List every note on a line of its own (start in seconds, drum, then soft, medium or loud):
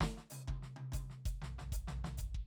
0.01 kick soft
0.01 snare medium
0.18 snare soft
0.30 hi-hat pedal medium
0.30 high tom medium
0.48 kick soft
0.48 high tom medium
0.63 snare soft
0.77 high tom medium
0.92 kick soft
0.92 hi-hat pedal medium
0.92 high tom medium
1.10 snare soft
1.26 kick medium
1.26 hi-hat pedal medium
1.42 snare soft
1.42 floor tom medium
1.59 snare soft
1.59 floor tom medium
1.73 kick soft
1.73 hi-hat pedal medium
1.88 snare soft
1.88 floor tom medium
2.05 snare soft
2.05 floor tom medium
2.18 kick soft
2.18 hi-hat pedal medium
2.35 kick soft